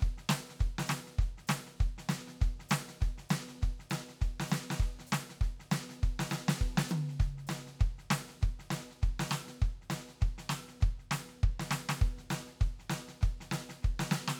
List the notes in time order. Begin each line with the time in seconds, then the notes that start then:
0.01 kick, snare
0.18 snare
0.30 snare, hi-hat pedal
0.50 snare
0.60 kick, snare
0.79 snare
0.88 snare, hi-hat pedal
1.07 snare
1.19 kick, snare
1.38 snare
1.48 kick, snare, hi-hat pedal
1.67 snare
1.80 kick, snare
1.99 snare
2.09 snare, hi-hat pedal
2.28 snare
2.41 kick, snare
2.60 snare
2.70 snare, hi-hat pedal
2.89 snare
3.01 kick, snare
3.18 snare
3.30 snare, hi-hat pedal
3.49 snare
3.62 kick, snare
3.80 snare
3.90 snare, hi-hat pedal
4.09 snare
4.21 kick, snare
4.40 snare
4.48 snare, hi-hat pedal
4.71 snare
4.80 kick, snare
5.00 snare
5.07 hi-hat pedal
5.13 snare
5.30 snare
5.42 kick, snare
5.60 snare
5.72 snare, hi-hat pedal
5.90 snare
6.03 kick, snare
6.20 snare
6.30 snare, hi-hat pedal
6.49 snare
6.62 kick, snare
6.78 snare
6.89 hi-hat pedal, high tom
7.09 snare
7.20 kick, snare
7.38 snare
7.47 snare, hi-hat pedal
7.67 snare
7.80 kick, snare
7.99 snare
8.11 snare, hi-hat pedal
8.29 snare
8.42 kick, snare
8.60 snare
8.71 snare, hi-hat pedal
8.76 kick
8.91 snare
9.03 kick, snare
9.20 snare
9.29 snare, hi-hat pedal
9.48 snare
9.62 kick, snare
9.82 snare
9.91 snare, hi-hat pedal
10.09 snare
10.21 kick, snare
10.39 snare
10.50 snare, hi-hat pedal
10.69 snare
10.81 kick, snare
11.00 snare
11.12 snare, hi-hat pedal
11.29 snare
11.44 kick, snare
11.60 snare
11.71 snare, hi-hat pedal
11.89 snare
12.02 kick, snare
12.18 snare
12.31 snare, hi-hat pedal
12.47 snare
12.61 kick, snare
12.80 snare
12.90 snare, hi-hat pedal
13.09 snare
13.22 kick, snare
13.41 snare
13.52 snare, hi-hat pedal
13.70 snare
13.83 kick, snare
14.00 snare
14.12 snare, hi-hat pedal
14.28 snare